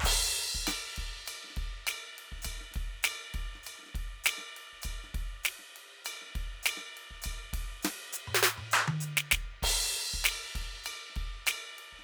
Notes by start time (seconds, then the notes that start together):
0.01 kick, percussion
0.05 hi-hat pedal, crash
0.19 kick
0.55 kick
0.68 snare, hi-hat pedal, ride bell
0.97 kick, ride
1.04 kick
1.27 hi-hat pedal, ride bell
1.45 snare
1.49 snare
1.51 snare
1.56 kick, snare, ride
1.64 kick
1.88 snare, hi-hat pedal, ride bell
2.19 ride
2.33 kick
2.40 snare, hi-hat pedal
2.45 kick, ride bell
2.59 snare
2.62 snare
2.72 snare, ride
2.77 kick
3.04 snare, hi-hat pedal, ride bell
3.35 kick, ride
3.40 kick
3.56 snare
3.64 hi-hat pedal, ride bell
3.80 snare
3.84 snare
3.87 snare
3.89 snare
3.95 kick, ride
4.02 kick
4.25 snare, hi-hat pedal, ride bell
4.39 snare
4.57 ride
4.74 kick
4.83 kick, hi-hat pedal, ride bell
4.94 kick
5.05 snare
5.10 snare
5.15 kick, ride
5.22 kick
5.44 snare, hi-hat pedal, ride
5.60 snare
5.77 ride
6.05 hi-hat pedal, ride bell
6.22 snare
6.28 snare
6.31 snare
6.36 kick, ride
6.43 kick
6.64 snare, hi-hat pedal, ride bell
6.78 snare
6.98 ride
7.11 kick
7.23 hi-hat pedal, ride bell
7.27 kick
7.33 kick
7.54 kick, ride
7.61 kick
7.83 snare, hi-hat pedal, ride
8.13 hi-hat pedal
8.28 mid tom
8.35 snare
8.44 snare, hi-hat pedal
8.55 mid tom, ride
8.72 percussion, hi-hat pedal
8.88 high tom
9.01 hi-hat pedal
9.18 snare
9.32 kick, snare, hi-hat pedal
9.63 kick, hi-hat pedal, crash
9.71 kick
10.14 kick
10.25 snare, hi-hat pedal, ride bell
10.56 kick, ride
10.62 kick
10.85 hi-hat pedal, ride bell
11.11 snare
11.17 kick, ride
11.24 kick
11.47 snare, hi-hat pedal, ride bell
11.79 ride
11.93 kick
12.00 snare